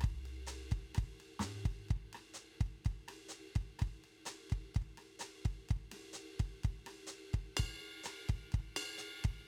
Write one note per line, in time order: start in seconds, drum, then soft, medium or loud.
0.01 kick soft
0.01 cross-stick soft
0.01 snare soft
0.01 ride medium
0.10 kick soft
0.26 ride soft
0.47 cross-stick soft
0.47 hi-hat pedal medium
0.47 ride medium
0.72 kick soft
0.72 ride soft
0.95 kick soft
0.95 cross-stick soft
0.95 ride medium
1.04 kick soft
1.21 ride soft
1.40 snare soft
1.40 hi-hat pedal medium
1.40 mid tom soft
1.40 ride medium
1.66 kick soft
1.66 ride soft
1.89 kick soft
1.89 ride soft
1.97 kick soft
2.14 cross-stick soft
2.14 ride medium
2.34 hi-hat pedal medium
2.34 ride soft
2.61 kick soft
2.61 ride soft
2.66 kick soft
2.85 kick soft
2.85 ride soft
2.91 kick soft
3.09 cross-stick soft
3.09 ride medium
3.29 hi-hat pedal medium
3.29 ride soft
3.56 kick soft
3.56 ride soft
3.62 kick soft
3.80 kick soft
3.80 cross-stick soft
3.80 ride medium
3.87 kick soft
4.04 ride soft
4.26 cross-stick soft
4.26 snare soft
4.26 hi-hat pedal medium
4.26 ride medium
4.50 kick soft
4.50 ride soft
4.75 kick soft
4.75 ride soft
4.82 kick soft
4.98 cross-stick soft
4.98 ride medium
5.20 cross-stick soft
5.20 hi-hat pedal medium
5.20 ride medium
5.46 kick soft
5.46 ride soft
5.69 kick soft
5.69 ride soft
5.77 kick soft
5.92 snare soft
5.92 ride medium
6.14 hi-hat pedal medium
6.14 ride soft
6.40 kick soft
6.40 ride soft
6.64 kick soft
6.64 ride medium
6.70 kick soft
6.87 cross-stick soft
6.87 ride medium
7.07 hi-hat pedal medium
7.07 ride soft
7.34 kick soft
7.34 ride soft
7.57 kick soft
7.57 ride bell loud
7.65 kick soft
7.81 ride soft
8.04 cross-stick soft
8.04 hi-hat pedal medium
8.04 ride medium
8.29 kick soft
8.29 ride medium
8.35 kick soft
8.53 kick soft
8.53 ride medium
8.60 kick soft
8.77 ride bell loud
8.98 hi-hat pedal medium
8.98 ride soft
9.25 kick soft
9.25 ride medium
9.31 kick soft